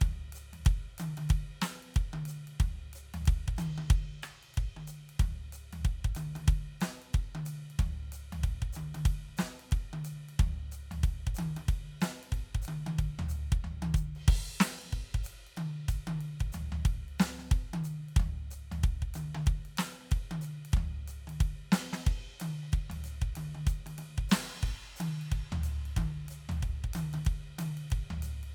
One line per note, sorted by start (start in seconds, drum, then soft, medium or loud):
0.01 kick medium
0.01 floor tom medium
0.01 ride medium
0.32 hi-hat pedal medium
0.32 ride medium
0.53 floor tom medium
0.53 ride medium
0.65 kick loud
0.65 ride medium
0.98 hi-hat pedal medium
0.98 high tom loud
0.98 ride medium
1.17 high tom medium
1.17 ride medium
1.29 kick medium
1.29 ride medium
1.62 snare medium
1.62 hi-hat pedal medium
1.62 ride medium
1.83 ride soft
1.94 kick medium
1.94 ride soft
2.13 high tom loud
2.25 hi-hat pedal medium
2.25 ride medium
2.47 ride soft
2.60 kick medium
2.60 floor tom medium
2.60 ride medium
2.93 hi-hat pedal medium
2.93 ride medium
3.14 floor tom medium
3.14 ride medium
3.26 kick loud
3.26 ride medium
3.48 kick medium
3.57 hi-hat pedal medium
3.57 high tom loud
3.57 ride medium
3.78 high tom loud
3.90 kick loud
3.90 ride soft
4.23 cross-stick medium
4.23 hi-hat pedal medium
4.23 ride medium
4.43 ride soft
4.54 kick medium
4.54 ride soft
4.76 high tom medium
4.87 hi-hat pedal medium
4.87 ride medium
5.09 ride soft
5.19 kick medium
5.19 floor tom medium
5.19 ride medium
5.52 hi-hat pedal medium
5.52 ride medium
5.73 floor tom medium
5.73 ride medium
5.85 kick medium
5.85 ride soft
6.04 kick medium
6.15 hi-hat pedal medium
6.15 high tom loud
6.15 ride medium
6.35 high tom medium
6.35 ride medium
6.48 kick loud
6.48 ride medium
6.80 snare medium
6.80 hi-hat pedal medium
6.80 ride medium
7.02 ride soft
7.14 kick medium
7.14 ride soft
7.35 high tom loud
7.45 hi-hat pedal medium
7.45 ride medium
7.70 ride soft
7.79 kick medium
7.79 floor tom medium
7.79 ride medium
8.12 hi-hat pedal medium
8.12 ride medium
8.32 floor tom medium
8.32 ride medium
8.43 kick medium
8.43 ride medium
8.62 kick medium
8.73 hi-hat pedal medium
8.73 high tom medium
8.73 ride medium
8.94 high tom medium
8.94 ride medium
9.05 kick medium
9.05 ride medium
9.28 kick soft
9.37 snare medium
9.37 hi-hat pedal medium
9.37 ride medium
9.43 kick soft
9.60 ride soft
9.71 kick medium
9.71 ride medium
9.93 high tom loud
10.04 hi-hat pedal medium
10.04 ride medium
10.12 kick soft
10.29 ride soft
10.39 kick loud
10.39 floor tom loud
10.39 ride soft
10.60 kick soft
10.72 hi-hat pedal medium
10.72 ride medium
10.91 floor tom medium
10.91 ride medium
11.03 kick medium
11.03 ride medium
11.27 kick medium
11.34 hi-hat pedal medium
11.34 ride medium
11.38 high tom loud
11.57 high tom medium
11.57 ride medium
11.68 kick medium
11.68 ride medium
12.01 snare loud
12.01 hi-hat pedal medium
12.01 ride medium
12.23 ride medium
12.32 kick medium
12.32 ride medium
12.55 kick medium
12.62 hi-hat pedal medium
12.62 ride medium
12.68 high tom loud
12.86 high tom loud
12.99 kick medium
12.99 ride medium
13.19 floor tom loud
13.29 hi-hat pedal medium
13.29 ride medium
13.52 kick medium
13.64 floor tom medium
13.82 high tom loud
13.94 kick medium
13.94 hi-hat pedal medium
14.15 ride medium
14.28 kick loud
14.28 crash loud
14.60 snare loud
14.60 hi-hat pedal medium
14.60 ride loud
14.82 ride soft
14.93 kick medium
14.93 ride soft
15.14 kick medium
15.24 hi-hat pedal medium
15.24 ride medium
15.47 ride soft
15.57 high tom loud
15.57 ride soft
15.88 kick medium
15.88 hi-hat pedal medium
15.88 ride medium
16.07 high tom loud
16.21 ride medium
16.40 kick medium
16.40 ride soft
16.52 floor tom loud
16.52 hi-hat pedal medium
16.52 ride medium
16.72 floor tom loud
16.85 kick medium
16.85 ride medium
17.08 ride soft
17.18 snare loud
17.18 hi-hat pedal medium
17.18 ride soft
17.38 snare soft
17.51 kick medium
17.51 ride medium
17.73 high tom loud
17.84 hi-hat pedal medium
17.84 ride medium
18.09 ride soft
18.16 kick loud
18.16 floor tom loud
18.16 ride soft
18.51 kick soft
18.51 hi-hat pedal medium
18.51 ride medium
18.72 floor tom loud
18.72 ride soft
18.83 kick medium
18.83 ride soft
19.02 kick soft
19.14 hi-hat pedal medium
19.14 high tom loud
19.14 ride medium
19.35 high tom medium
19.46 kick medium
19.46 ride soft
19.65 ride soft
19.77 snare loud
19.77 hi-hat pedal medium
19.77 ride medium
20.00 snare soft
20.11 kick medium
20.11 ride medium
20.31 high tom loud
20.41 hi-hat pedal medium
20.41 ride medium
20.65 ride medium
20.72 kick medium
20.72 ride soft
20.77 floor tom loud
21.07 kick soft
21.07 hi-hat pedal medium
21.07 ride medium
21.27 high tom medium
21.27 ride medium
21.40 kick medium
21.40 ride medium
21.72 snare loud
21.72 hi-hat pedal medium
21.72 ride medium
21.93 snare medium
22.07 kick medium
22.07 ride soft
22.40 hi-hat pedal medium
22.40 high tom loud
22.40 ride medium
22.63 high tom soft
22.72 kick medium
22.72 ride soft
22.76 hi-hat pedal soft
22.90 floor tom medium
22.90 ride medium
23.04 hi-hat pedal medium
23.04 ride medium
23.22 kick medium
23.36 high tom loud
23.36 ride medium
23.55 high tom medium
23.67 kick medium
23.67 hi-hat pedal medium
23.67 ride medium
23.86 high tom medium
23.86 ride medium
23.98 high tom medium
23.98 ride medium
24.18 kick medium
24.29 snare loud
24.29 hi-hat pedal medium
24.29 crash medium
24.63 kick medium
24.67 ride soft
24.96 hi-hat pedal medium
25.00 high tom loud
25.00 ride medium
25.21 ride soft
25.32 kick medium
25.32 ride soft
25.52 floor tom loud
25.63 hi-hat pedal medium
25.63 ride medium
25.86 ride soft
25.96 kick medium
25.96 high tom loud
25.96 ride medium
26.28 hi-hat pedal medium
26.28 ride medium
26.49 floor tom loud
26.49 ride soft
26.63 kick medium
26.63 ride soft
26.84 kick medium
26.94 hi-hat pedal medium
26.94 high tom loud
26.94 ride medium
27.04 kick soft
27.13 high tom medium
27.13 ride medium
27.25 kick medium
27.25 ride medium
27.59 hi-hat pedal medium
27.59 high tom loud
27.59 ride loud
27.77 ride medium
27.90 kick medium
27.90 ride medium
28.10 floor tom loud
28.22 hi-hat pedal medium
28.22 ride medium
28.43 ride soft